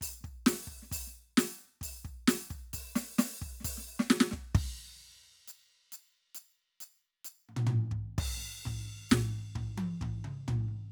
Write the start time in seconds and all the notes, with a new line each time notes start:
0.01 kick, percussion
0.20 kick, snare, percussion
0.46 snare, percussion
0.67 kick, percussion
0.82 snare
0.91 kick, percussion
1.07 snare
1.14 percussion
1.37 snare, percussion
1.59 percussion
1.81 kick, percussion
2.05 kick, percussion
2.28 snare, percussion
2.50 kick, percussion
2.73 kick, percussion
2.96 snare, percussion
3.18 snare, percussion
3.41 kick, percussion
3.60 snare
3.64 kick, percussion
3.77 snare
3.87 percussion
3.99 snare
4.10 snare
4.20 snare
4.31 kick, snare
4.55 kick, crash
5.48 percussion
5.92 percussion
6.35 percussion
6.80 percussion
7.25 percussion
7.49 floor tom
7.57 floor tom
7.91 kick, floor tom
8.18 kick, crash
8.37 floor tom
8.65 kick, floor tom
9.09 kick, snare, floor tom, percussion
9.55 kick, floor tom
9.67 kick
9.78 high tom
10.01 kick, floor tom
10.13 kick
10.24 mid tom
10.48 kick, floor tom
10.68 floor tom